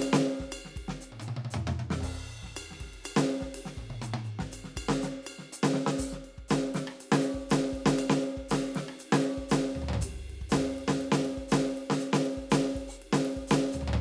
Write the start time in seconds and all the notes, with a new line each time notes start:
0.01 hi-hat pedal, ride bell
0.14 snare
0.21 snare
0.41 kick, snare
0.52 hi-hat pedal, ride bell
0.66 snare
0.77 kick, ride
0.85 kick, snare
1.02 hi-hat pedal
1.13 high tom
1.21 hi-hat pedal, high tom
1.29 high tom
1.37 high tom
1.46 high tom
1.51 hi-hat pedal, mid tom
1.66 hi-hat pedal, mid tom
1.80 mid tom
1.91 snare
2.01 kick, snare, hi-hat pedal, crash
2.09 kick
2.44 kick, snare
2.57 hi-hat pedal, ride bell
2.72 snare
2.81 kick, snare, ride
2.86 kick, snare
2.94 ride
3.05 hi-hat pedal, ride bell
3.17 snare
3.24 snare
3.31 ride
3.41 kick, snare
3.55 hi-hat pedal, ride
3.66 snare
3.78 kick, high tom
3.91 high tom
4.03 hi-hat pedal, high tom
4.14 high tom
4.25 hi-hat pedal, high tom
4.40 kick, snare
4.50 kick, hi-hat pedal, ride bell
4.65 snare
4.77 kick, ride bell
4.83 kick
4.89 snare
5.03 snare, hi-hat pedal
5.24 hi-hat pedal, ride bell
5.39 snare
5.53 hi-hat pedal, ride bell
5.64 snare
5.74 snare
5.87 snare
5.99 kick, hi-hat pedal, ride bell
6.06 kick
6.13 snare, hi-hat pedal
6.25 ride bell
6.39 kick
6.49 snare, hi-hat pedal, ride bell
6.75 snare, hi-hat pedal, ride
6.88 cross-stick
7.01 hi-hat pedal, ride
7.13 snare
7.22 hi-hat pedal, ride
7.35 kick
7.50 snare, hi-hat pedal, ride
7.63 snare
7.73 kick, ride
7.79 kick
7.87 snare
7.99 hi-hat pedal, ride bell
8.11 snare
8.20 hi-hat pedal
8.24 ride
8.38 kick
8.49 snare, hi-hat pedal, ride
8.76 snare, ride
8.89 cross-stick
9.00 hi-hat pedal, ride
9.13 snare
9.21 hi-hat pedal
9.25 ride
9.38 kick
9.50 snare, hi-hat pedal, ride
9.68 hi-hat pedal
9.76 floor tom
9.83 floor tom
9.89 floor tom
9.94 floor tom
10.02 kick, hi-hat pedal, ride
10.08 kick
10.31 ride
10.42 kick
10.50 snare, hi-hat pedal, ride
10.79 ride
10.89 snare
10.96 hi-hat pedal
11.02 ride
11.13 snare
11.21 snare
11.26 ride
11.38 kick
11.45 kick
11.49 snare, hi-hat pedal, ride
11.71 hi-hat pedal
11.78 ride
11.91 snare
12.00 hi-hat pedal, ride
12.14 snare
12.22 hi-hat pedal, ride
12.38 kick
12.51 snare, hi-hat pedal, ride
12.63 snare
12.76 kick, ride
12.82 kick
12.89 open hi-hat
12.94 hi-hat pedal
13.03 ride
13.14 snare
13.26 ride
13.37 kick
13.42 kick
13.48 snare, hi-hat pedal, ride
13.73 floor tom, hi-hat pedal
13.82 floor tom
13.89 floor tom
13.94 floor tom